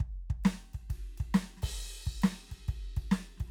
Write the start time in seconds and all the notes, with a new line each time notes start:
0.00 kick
0.30 kick
0.44 snare, ride, floor tom
0.74 kick, ride bell
0.81 snare
0.89 kick, snare, ride
0.92 snare
0.95 snare
1.18 kick, ride bell
1.35 snare, ride
1.57 snare
1.63 kick, snare, crash
1.69 snare
1.73 snare
1.78 snare
1.85 snare
1.98 snare
2.06 kick, ride
2.22 snare, ride
2.49 kick, snare, ride
2.58 snare
2.61 snare
2.65 snare
2.67 kick, snare, ride
2.71 snare
2.97 kick, ride
3.12 snare, ride
3.38 kick, snare, ride
3.47 snare